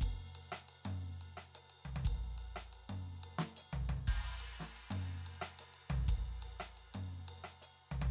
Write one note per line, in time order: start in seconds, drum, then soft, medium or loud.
0.01 kick medium
0.01 ride loud
0.35 ride loud
0.52 cross-stick medium
0.52 hi-hat pedal medium
0.68 ride medium
0.85 mid tom medium
0.85 ride loud
1.21 ride medium
1.37 cross-stick medium
1.54 hi-hat pedal medium
1.54 ride loud
1.70 ride medium
1.85 floor tom medium
1.96 floor tom medium
2.05 kick medium
2.05 ride loud
2.38 ride medium
2.56 cross-stick medium
2.56 hi-hat pedal medium
2.73 ride medium
2.89 mid tom medium
2.89 ride loud
3.23 ride loud
3.38 snare medium
3.56 hi-hat pedal medium
3.56 ride bell medium
3.73 floor tom medium
3.89 floor tom medium
4.07 kick medium
4.07 ride medium
4.40 ride loud
4.59 snare soft
4.59 hi-hat pedal medium
4.76 ride medium
4.90 mid tom loud
4.90 ride loud
5.26 ride medium
5.41 cross-stick medium
5.59 hi-hat pedal medium
5.59 ride loud
5.74 ride medium
5.90 floor tom loud
6.08 kick medium
6.08 ride loud
6.42 ride loud
6.60 cross-stick medium
6.60 hi-hat pedal medium
6.77 ride medium
6.94 mid tom medium
6.94 ride loud
7.10 hi-hat pedal soft
7.28 ride loud
7.44 cross-stick medium
7.61 hi-hat pedal medium
7.61 ride bell medium
7.91 floor tom medium
8.01 floor tom loud